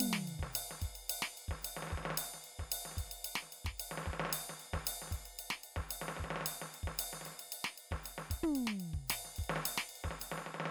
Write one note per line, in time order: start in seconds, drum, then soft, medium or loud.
0.01 hi-hat pedal medium
0.01 ride loud
0.14 snare loud
0.28 ride soft
0.40 kick soft
0.40 snare soft
0.53 hi-hat pedal medium
0.53 ride bell loud
0.72 snare soft
0.80 kick soft
0.80 snare soft
0.80 ride medium
0.86 snare soft
0.96 ride medium
1.09 hi-hat pedal medium
1.09 ride bell loud
1.23 snare loud
1.38 ride soft
1.49 kick soft
1.49 snare soft
1.63 hi-hat pedal medium
1.63 ride bell loud
1.77 snare soft
1.83 snare soft
1.88 snare soft
1.91 kick soft
1.91 snare soft
1.98 kick soft
1.98 snare soft
2.04 snare soft
2.06 snare medium
2.11 snare medium
2.18 hi-hat pedal medium
2.18 ride bell loud
2.34 snare soft
2.45 ride soft
2.60 kick soft
2.60 snare soft
2.71 hi-hat pedal medium
2.71 ride bell loud
2.86 snare soft
2.92 snare soft
2.97 kick soft
2.97 snare soft
2.97 ride medium
3.04 snare soft
3.08 snare soft
3.12 ride medium
3.25 hi-hat pedal medium
3.25 ride bell loud
3.36 snare medium
3.43 snare soft
3.53 ride medium
3.65 kick soft
3.65 snare medium
3.71 kick soft
3.78 hi-hat pedal medium
3.78 ride bell medium
3.92 snare soft
3.98 snare soft
4.04 snare soft
4.07 kick soft
4.07 snare soft
4.14 snare soft
4.20 snare medium
4.26 snare medium
4.31 snare soft
4.31 ride loud
4.35 hi-hat pedal medium
4.50 snare soft
4.60 ride soft
4.74 kick soft
4.74 snare medium
4.85 hi-hat pedal medium
4.85 ride bell loud
5.03 snare soft
5.08 kick soft
5.08 snare soft
5.12 snare soft
5.12 ride medium
5.19 snare soft
5.26 ride soft
5.39 hi-hat pedal medium
5.39 ride medium
5.51 snare loud
5.64 ride medium
5.77 kick soft
5.77 snare soft
5.90 hi-hat pedal medium
5.90 ride loud
6.02 snare soft
6.09 snare soft
6.17 kick soft
6.17 snare soft
6.25 snare soft
6.31 snare medium
6.37 snare medium
6.42 snare soft
6.47 hi-hat pedal medium
6.47 ride bell loud
6.62 snare soft
6.75 ride soft
6.84 kick soft
6.88 snare soft
6.98 hi-hat pedal medium
6.98 ride bell loud
7.14 snare soft
7.22 snare soft
7.22 ride medium
7.27 snare soft
7.33 snare soft
7.40 ride medium
7.53 hi-hat pedal medium
7.53 ride bell medium
7.65 snare loud
7.78 ride soft
7.92 kick soft
7.92 snare soft
8.04 hi-hat pedal medium
8.04 ride medium
8.19 snare soft
8.31 kick soft
8.31 ride medium
8.43 floor tom loud
8.56 hi-hat pedal medium
8.56 ride medium
8.68 snare medium
8.80 ride soft
8.94 kick soft
9.08 snare medium
9.08 hi-hat pedal medium
9.08 ride loud
9.26 snare soft
9.37 kick soft
9.37 ride soft
9.45 ride soft
9.50 snare medium
9.57 snare medium
9.66 hi-hat pedal medium
9.66 ride loud
9.78 snare loud
9.90 ride soft
9.96 ride soft
10.02 kick soft
10.02 snare soft
10.02 ride soft
10.11 snare soft
10.20 hi-hat pedal medium
10.20 ride medium
10.32 snare medium
10.39 snare soft
10.47 snare soft
10.55 snare soft
10.61 snare medium
10.66 snare medium